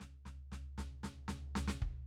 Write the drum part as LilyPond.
\new DrumStaff \drummode { \time 4/4 \tempo 4 = 116 <sn tomfh>8 <sn tomfh>8 <tomfh sn>8 <sn tomfh>8 <sn tomfh>8 <sn tomfh>8 <sn tomfh>16 <sn tomfh>16 bd8 | }